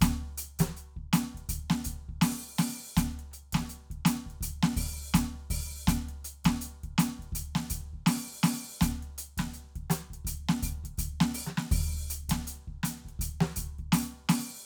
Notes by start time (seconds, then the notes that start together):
0.01 closed hi-hat, kick, snare, hi-hat pedal
0.38 closed hi-hat
0.60 closed hi-hat, kick, snare
0.66 snare
0.77 closed hi-hat
0.97 kick
1.14 closed hi-hat, snare
1.36 kick, closed hi-hat
1.50 closed hi-hat, kick
1.71 snare
1.85 closed hi-hat, kick
2.10 kick
2.22 open hi-hat, snare
2.59 open hi-hat, snare
2.97 open hi-hat, kick, snare, hi-hat pedal
3.20 closed hi-hat
3.32 closed hi-hat, cross-stick
3.53 kick, snare, closed hi-hat
3.61 snare
3.70 closed hi-hat
3.91 kick, closed hi-hat
4.06 closed hi-hat, snare
4.27 kick, closed hi-hat
4.42 closed hi-hat, kick
4.64 snare
4.77 open hi-hat, kick
5.11 hi-hat pedal
5.15 closed hi-hat, kick, snare
5.51 open hi-hat, kick
5.88 open hi-hat, kick, snare, hi-hat pedal
6.09 closed hi-hat
6.25 closed hi-hat
6.45 kick, snare, closed hi-hat
6.62 closed hi-hat
6.84 kick, closed hi-hat
6.99 closed hi-hat, snare
7.20 kick, closed hi-hat
7.33 closed hi-hat, kick
7.56 snare
7.71 closed hi-hat, kick
7.94 kick
8.07 open hi-hat, snare, hi-hat pedal
8.44 open hi-hat, snare
8.82 open hi-hat, kick, snare, hi-hat pedal
9.03 closed hi-hat
9.19 closed hi-hat
9.38 kick, snare, closed hi-hat
9.54 closed hi-hat
9.76 kick, closed hi-hat
9.91 closed hi-hat, snare
10.11 kick, closed hi-hat
10.26 closed hi-hat, kick
10.50 snare
10.63 open hi-hat, kick, hi-hat pedal
10.85 kick, closed hi-hat
10.98 closed hi-hat, kick, hi-hat pedal
11.21 snare
11.35 open hi-hat
11.41 kick, hi-hat pedal
11.47 snare
11.58 snare
11.72 open hi-hat, kick
12.09 closed hi-hat, hi-hat pedal
12.30 kick, snare, closed hi-hat
12.48 closed hi-hat
12.68 kick
12.84 closed hi-hat, snare
13.06 kick, closed hi-hat
13.20 closed hi-hat, kick
13.41 snare
13.57 closed hi-hat, kick
13.79 kick, closed hi-hat
13.93 open hi-hat, snare, hi-hat pedal
14.25 kick
14.30 open hi-hat, snare